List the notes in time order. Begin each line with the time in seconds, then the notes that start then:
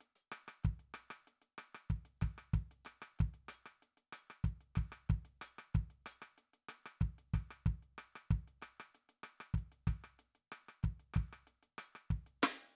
0.01 closed hi-hat
0.16 closed hi-hat
0.32 cross-stick, closed hi-hat
0.48 cross-stick
0.64 kick, closed hi-hat
0.80 closed hi-hat
0.94 cross-stick, closed hi-hat
1.11 cross-stick
1.28 closed hi-hat
1.42 closed hi-hat
1.59 cross-stick, closed hi-hat
1.75 cross-stick
1.90 kick, closed hi-hat
2.06 closed hi-hat
2.22 kick, cross-stick, closed hi-hat
2.38 cross-stick
2.54 kick, closed hi-hat
2.72 closed hi-hat
2.86 cross-stick, closed hi-hat
3.02 cross-stick
3.19 kick, closed hi-hat
3.34 closed hi-hat
3.49 closed hi-hat, cross-stick
3.66 cross-stick
3.83 closed hi-hat
3.98 closed hi-hat
4.13 closed hi-hat, cross-stick
4.30 cross-stick
4.45 kick, closed hi-hat
4.61 closed hi-hat
4.76 kick, cross-stick, closed hi-hat
4.92 cross-stick
5.10 kick, closed hi-hat
5.25 closed hi-hat
5.42 closed hi-hat, cross-stick
5.59 cross-stick
5.75 kick, closed hi-hat
5.91 closed hi-hat
6.06 closed hi-hat, cross-stick
6.22 cross-stick
6.38 closed hi-hat
6.54 closed hi-hat
6.69 cross-stick, closed hi-hat
6.86 cross-stick
7.01 kick, closed hi-hat
7.19 closed hi-hat
7.34 kick, cross-stick, closed hi-hat
7.51 cross-stick
7.66 kick, closed hi-hat
7.83 closed hi-hat
7.99 cross-stick, closed hi-hat
8.16 cross-stick
8.31 kick, closed hi-hat
8.48 closed hi-hat
8.62 cross-stick, closed hi-hat
8.80 cross-stick
8.95 closed hi-hat
9.09 closed hi-hat
9.24 cross-stick, closed hi-hat
9.41 cross-stick
9.54 kick, closed hi-hat
9.72 closed hi-hat
9.88 kick, cross-stick, closed hi-hat
10.04 cross-stick
10.20 closed hi-hat
10.36 closed hi-hat
10.52 cross-stick, closed hi-hat
10.69 cross-stick
10.84 kick, closed hi-hat
11.00 closed hi-hat
11.14 kick, cross-stick, closed hi-hat
11.33 cross-stick
11.47 closed hi-hat
11.63 closed hi-hat
11.79 closed hi-hat, cross-stick
11.96 cross-stick
12.11 kick, closed hi-hat
12.27 closed hi-hat
12.43 open hi-hat, snare